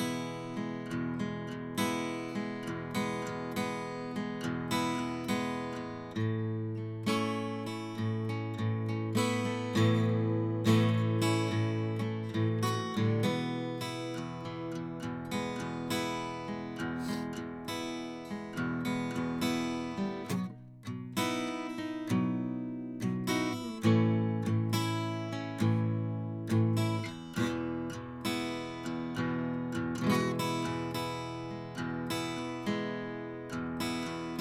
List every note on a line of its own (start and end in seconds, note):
0.00 0.58 G#3
0.00 1.78 B3
0.58 1.20 G#3
0.93 1.49 E2
1.21 1.79 G#3
1.49 2.65 E2
1.79 2.34 G#3
1.79 2.95 B3
1.79 4.71 E4
2.37 2.96 G#3
2.69 3.26 E2
2.96 3.58 G#3
2.96 3.55 B3
3.28 4.41 E2
3.58 4.15 G#3
3.58 4.72 B3
4.17 4.72 G#3
4.43 4.96 E2
4.43 5.82 B2
4.72 5.31 G#3
4.72 5.28 B3
4.72 7.10 E4
4.96 5.74 E2
5.30 6.16 G#3
5.30 6.18 B3
5.74 6.84 E2
6.17 7.97 A2
6.79 7.06 A3
7.08 8.32 A3
7.08 7.68 C#4
7.08 7.66 E4
7.68 8.28 C#4
7.68 9.18 E4
8.00 8.57 A2
8.30 8.90 C#4
8.60 9.76 A2
8.81 9.14 A3
8.90 9.15 C#4
9.17 9.47 A3
9.17 10.70 B3
9.17 10.67 E4
9.47 9.78 A3
9.76 10.65 A2
9.76 10.68 E3
9.76 10.67 A3
10.67 11.53 A2
10.67 11.50 E3
10.67 12.02 A3
10.67 10.91 B3
10.91 11.24 C#4
11.23 11.99 C#4
11.23 12.53 E4
11.50 12.33 A2
11.50 12.37 E3
12.01 12.97 A3
12.01 12.29 C#4
12.36 12.77 A2
12.36 12.97 E3
12.64 13.00 F#4
12.98 13.25 A2
12.98 13.27 D3
12.98 13.25 G3
13.24 15.04 B2
13.24 14.44 E3
13.24 15.08 G#3
13.24 13.83 B3
13.82 15.30 B3
13.82 15.90 E4
14.16 14.74 E2
14.46 15.82 E3
14.77 15.04 E2
15.04 15.57 E2
15.04 15.61 B2
15.33 15.92 G#3
15.33 15.92 B3
15.58 16.78 E2
15.63 16.81 B2
15.92 16.50 G#3
15.92 17.66 B3
15.92 17.69 E4
16.50 17.08 G#3
16.81 17.34 E2
16.81 17.35 B2
17.10 18.32 G#3
17.34 18.58 E2
17.34 17.45 B2
17.69 18.84 B3
17.69 19.42 E4
18.32 18.85 G#3
18.59 19.12 E2
18.59 19.19 B2
18.86 19.42 G#3
18.86 19.42 B3
19.12 20.21 E2
19.19 19.98 B2
19.43 19.95 G#3
19.43 20.54 B3
19.43 20.35 E4
19.99 20.25 G3
20.31 20.86 B2
20.31 20.51 F#3
20.88 22.11 B2
20.88 21.55 F#3
21.18 21.70 B3
21.18 21.78 D#4
21.18 23.26 E4
21.80 22.11 B3
21.80 23.31 D#4
22.12 23.02 B2
22.12 23.04 F#3
22.12 23.04 B3
23.03 23.60 B2
23.03 23.66 F#3
23.03 23.86 B3
23.29 23.57 D#4
23.29 23.83 E4
23.29 23.59 F#4
23.85 24.45 A2
23.85 24.47 E3
23.85 24.48 A3
23.85 24.75 C#4
23.89 24.73 E4
24.48 25.60 A2
24.48 25.63 E3
24.48 25.34 A3
24.75 25.32 C#4
24.75 26.59 E4
25.34 25.60 A3
25.34 26.78 C#4
25.60 26.52 A2
25.60 26.52 E3
25.60 26.52 A3
26.52 26.99 A2
26.52 27.05 E3
26.52 27.08 A3
26.78 27.05 C#4
26.78 27.02 E4
27.07 27.35 E2
27.38 27.91 E2
27.38 27.92 B2
27.38 29.18 E3
27.91 28.85 E2
27.91 29.17 B2
28.24 30.09 B3
28.24 29.60 E4
28.86 29.18 E2
29.18 29.74 E2
29.18 29.74 B2
29.18 30.03 E3
29.74 29.96 E2
29.74 30.00 B2
29.97 30.62 F2
30.03 30.67 B2
30.03 32.18 E3
30.08 31.52 G#3
30.08 30.24 B3
30.13 30.36 F#4
30.40 30.95 B3
30.40 30.94 E4
30.64 31.76 E2
30.64 31.80 B2
30.96 32.10 B3
30.96 32.09 E4
31.52 32.66 G#3
31.77 32.38 E2
31.77 33.51 B2
32.12 33.82 B3
32.12 33.79 E4
32.38 33.51 E2
32.68 33.89 E3
32.68 34.41 G#3
33.52 34.04 E2
33.52 34.03 B2
33.81 34.42 B3
33.81 34.41 E4
34.04 34.41 E2
34.04 34.18 B2